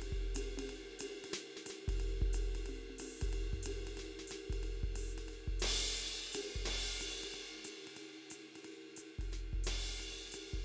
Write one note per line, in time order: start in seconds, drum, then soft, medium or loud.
0.02 ride medium
0.12 kick soft
0.35 hi-hat pedal loud
0.35 high tom soft
0.35 ride loud
0.57 high tom medium
0.57 ride medium
0.69 ride medium
0.90 snare soft
0.99 hi-hat pedal loud
0.99 ride loud
1.24 ride medium
1.33 snare medium
1.33 ride medium
1.57 snare soft
1.66 snare soft
1.66 hi-hat pedal loud
1.66 ride medium
1.88 kick soft
1.88 ride medium
2.00 ride medium
2.22 kick medium
2.33 hi-hat pedal loud
2.33 ride medium
2.55 hi-hat pedal soft
2.55 ride medium
2.66 high tom soft
2.66 ride medium
2.74 hi-hat pedal soft
2.90 high tom soft
2.98 hi-hat pedal loud
2.98 high tom soft
2.98 ride medium
3.21 kick soft
3.21 ride medium
3.33 ride medium
3.53 kick soft
3.63 hi-hat pedal loud
3.63 ride loud
3.87 ride medium
3.97 snare soft
3.97 ride medium
4.19 snare soft
4.27 hi-hat pedal loud
4.27 ride medium
4.31 snare soft
4.50 kick soft
4.50 ride medium
4.63 ride medium
4.83 kick soft
4.95 hi-hat pedal medium
4.95 ride medium
5.18 snare soft
5.18 ride medium
5.28 ride medium
5.33 snare soft
5.47 kick soft
5.59 snare medium
5.59 hi-hat pedal medium
5.59 ride loud
6.33 hi-hat pedal loud
6.33 ride loud
6.55 kick soft
6.65 snare medium
6.65 ride medium
6.99 hi-hat pedal medium
6.99 ride medium
7.23 ride medium
7.34 ride medium
7.64 hi-hat pedal loud
7.64 ride medium
7.87 ride medium
7.96 ride medium
8.30 hi-hat pedal loud
8.30 ride medium
8.55 ride medium
8.64 ride medium
8.96 hi-hat pedal loud
8.96 ride medium
9.19 kick soft
9.19 ride medium
9.32 snare soft
9.32 ride soft
9.53 kick soft
9.64 snare medium
9.64 hi-hat pedal loud
9.64 ride medium
9.89 ride medium
10.00 ride medium
10.26 snare soft
10.32 hi-hat pedal loud
10.32 ride medium
10.53 kick soft